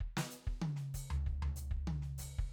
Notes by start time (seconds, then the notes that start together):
0.00 kick
0.17 snare
0.31 snare, hi-hat pedal
0.47 kick
0.62 high tom
0.76 snare
0.94 kick, snare, hi-hat pedal
1.10 floor tom
1.26 kick, snare
1.42 floor tom
1.56 snare, hi-hat pedal
1.71 kick
1.87 high tom
2.02 snare
2.18 kick, snare, hi-hat pedal
2.39 kick